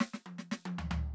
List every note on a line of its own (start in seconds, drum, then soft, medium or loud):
0.00 snare medium
0.14 snare medium
0.26 high tom medium
0.38 snare soft
0.51 snare medium
0.65 high tom loud
0.78 floor tom medium
0.91 floor tom loud